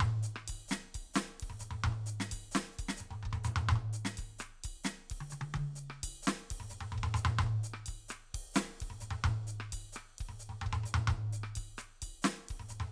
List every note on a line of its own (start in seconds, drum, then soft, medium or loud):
0.01 kick soft
0.01 mid tom loud
0.10 mid tom soft
0.23 hi-hat pedal medium
0.36 cross-stick medium
0.48 kick soft
0.48 ride bell medium
0.55 kick soft
0.69 snare medium
0.69 hi-hat pedal medium
0.95 kick soft
0.95 ride bell medium
1.14 snare loud
1.14 hi-hat pedal medium
1.40 kick soft
1.40 ride medium
1.50 mid tom medium
1.60 hi-hat pedal medium
1.60 mid tom medium
1.71 mid tom medium
1.84 kick soft
1.84 mid tom loud
1.93 mid tom soft
2.07 hi-hat pedal medium
2.21 snare medium
2.32 kick soft
2.32 ride bell medium
2.52 snare medium
2.52 hi-hat pedal medium
2.73 hi-hat pedal soft
2.79 kick soft
2.79 ride bell medium
2.89 snare medium
2.97 hi-hat pedal medium
2.97 mid tom medium
3.11 mid tom medium
3.23 kick soft
3.23 mid tom medium
3.31 kick soft
3.44 hi-hat pedal medium
3.44 mid tom loud
3.57 mid tom loud
3.69 kick soft
3.69 mid tom loud
3.76 kick soft
3.76 mid tom soft
3.93 hi-hat pedal medium
4.06 snare medium
4.18 kick soft
4.18 ride bell medium
4.39 cross-stick medium
4.39 hi-hat pedal medium
4.64 kick soft
4.64 ride bell medium
4.84 snare medium
4.84 hi-hat pedal medium
5.11 kick soft
5.11 ride medium
5.17 kick soft
5.17 high tom medium
5.30 hi-hat pedal medium
5.30 high tom medium
5.42 high tom medium
5.55 kick soft
5.55 high tom loud
5.76 hi-hat pedal medium
5.91 cross-stick medium
6.04 kick soft
6.04 ride bell loud
6.23 hi-hat pedal medium
6.28 snare loud
6.51 kick soft
6.51 ride medium
6.61 mid tom medium
6.70 hi-hat pedal medium
6.70 mid tom soft
6.81 mid tom medium
6.93 mid tom medium
6.98 kick soft
7.04 kick soft
7.04 mid tom loud
7.15 hi-hat pedal medium
7.15 mid tom loud
7.26 mid tom loud
7.39 kick soft
7.39 mid tom loud
7.47 kick soft
7.47 mid tom soft
7.64 hi-hat pedal medium
7.74 cross-stick medium
7.87 kick soft
7.87 ride bell medium
8.09 cross-stick medium
8.09 hi-hat pedal medium
8.35 kick soft
8.35 ride loud
8.55 snare loud
8.55 hi-hat pedal medium
8.81 kick soft
8.81 ride medium
8.88 kick soft
8.88 mid tom medium
9.01 hi-hat pedal medium
9.01 mid tom medium
9.11 mid tom medium
9.25 kick soft
9.25 mid tom loud
9.48 hi-hat pedal medium
9.61 cross-stick medium
9.73 kick soft
9.73 ride bell medium
9.79 kick soft
9.93 cross-stick medium
9.93 hi-hat pedal medium
10.19 kick soft
10.19 ride medium
10.29 mid tom medium
10.34 ride soft
10.40 hi-hat pedal medium
10.50 mid tom medium
10.62 mid tom medium
10.67 kick soft
10.72 kick soft
10.72 mid tom loud
10.84 hi-hat pedal medium
10.84 mid tom medium
10.95 mid tom loud
11.08 kick soft
11.08 mid tom loud
11.33 hi-hat pedal medium
11.44 cross-stick medium
11.56 kick soft
11.56 ride bell medium
11.78 cross-stick medium
11.78 hi-hat pedal medium
12.03 kick soft
12.03 ride bell medium
12.09 kick soft
12.23 snare loud
12.23 hi-hat pedal medium
12.49 kick soft
12.49 ride medium
12.60 mid tom medium
12.69 hi-hat pedal medium
12.69 mid tom soft
12.81 mid tom medium